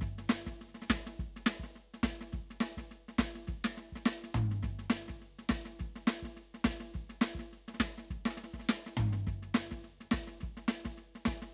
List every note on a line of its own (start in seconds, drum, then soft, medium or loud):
0.01 kick medium
0.01 snare soft
0.09 kick soft
0.13 kick soft
0.18 snare soft
0.27 snare loud
0.27 hi-hat pedal medium
0.47 kick soft
0.47 snare soft
0.61 snare soft
0.69 snare soft
0.75 snare soft
0.82 snare soft
0.88 kick soft
0.88 snare loud
0.88 hi-hat pedal medium
0.96 kick soft
0.99 kick soft
1.07 snare soft
1.19 kick soft
1.19 snare soft
1.26 kick soft
1.36 snare soft
1.45 snare loud
1.45 hi-hat pedal medium
1.60 kick soft
1.60 snare soft
1.76 snare soft
1.94 snare soft
2.03 kick soft
2.03 snare loud
2.03 hi-hat pedal medium
2.09 kick soft
2.12 kick soft
2.21 snare soft
2.32 kick soft
2.32 snare soft
2.40 kick soft
2.50 snare soft
2.60 snare loud
2.60 hi-hat pedal medium
2.77 kick soft
2.77 snare soft
2.91 snare soft
3.08 snare soft
3.18 kick soft
3.18 snare loud
3.18 hi-hat pedal medium
3.35 snare soft
3.47 kick soft
3.47 snare soft
3.55 kick soft
3.64 snare loud
3.75 snare soft
3.75 hi-hat pedal medium
3.92 kick soft
3.92 snare soft
4.24 snare soft
4.34 kick soft
4.34 floor tom loud
4.34 hi-hat pedal medium
4.42 kick soft
4.45 kick soft
4.51 snare soft
4.63 kick medium
4.63 snare soft
4.70 kick soft
4.79 snare soft
4.90 snare loud
4.90 hi-hat pedal medium
5.08 kick soft
5.08 snare soft
5.22 snare soft
5.39 snare soft
5.49 kick soft
5.49 snare loud
5.49 hi-hat pedal medium
5.60 kick soft
5.65 snare soft
5.79 kick soft
5.79 snare soft
5.96 snare soft
6.07 snare loud
6.07 hi-hat pedal medium
6.23 kick soft
6.23 snare soft
6.37 snare soft
6.54 snare soft
6.64 kick soft
6.64 snare loud
6.64 hi-hat pedal medium
6.72 kick soft
6.74 kick soft
6.80 snare soft
6.94 kick soft
6.94 snare soft
7.03 kick soft
7.09 snare soft
7.21 snare loud
7.21 hi-hat pedal medium
7.35 kick soft
7.39 snare soft
7.53 snare soft
7.68 snare soft
7.74 snare soft
7.79 kick soft
7.79 snare loud
7.79 hi-hat pedal medium
7.86 kick soft
7.98 snare soft
8.10 kick soft
8.10 snare soft
8.17 kick soft
8.25 snare loud
8.31 cross-stick medium
8.37 snare soft
8.37 hi-hat pedal medium
8.44 snare soft
8.51 snare soft
8.53 kick soft
8.53 snare soft
8.60 snare soft
8.64 snare soft
8.69 snare loud
8.86 snare soft
8.97 kick soft
8.97 hi-hat pedal medium
8.97 floor tom loud
9.06 kick soft
9.08 kick soft
9.13 snare soft
9.27 kick soft
9.27 snare soft
9.34 kick soft
9.38 kick soft
9.43 snare soft
9.54 snare loud
9.54 hi-hat pedal medium
9.71 kick soft
9.71 snare soft
9.84 snare soft
10.00 snare soft
10.11 kick soft
10.11 snare loud
10.11 hi-hat pedal medium
10.20 kick soft
10.22 kick soft
10.27 snare soft
10.41 kick soft
10.41 snare soft
10.57 snare soft
10.68 snare loud
10.68 hi-hat pedal medium
10.85 kick soft
10.85 snare medium
10.97 snare soft
11.15 snare soft
11.25 kick soft
11.25 snare loud
11.25 hi-hat pedal medium
11.34 kick soft
11.42 snare soft